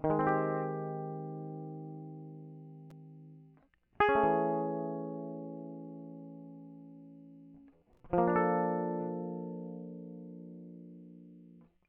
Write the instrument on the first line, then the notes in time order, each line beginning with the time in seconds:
electric guitar
0.05 D#3
0.11 G#3
0.20 C4
0.27 G4
4.01 G#4
4.10 C#4
4.16 A3
4.25 E3
8.11 F3 A#3
8.19 A#3
8.28 D4
8.36 A4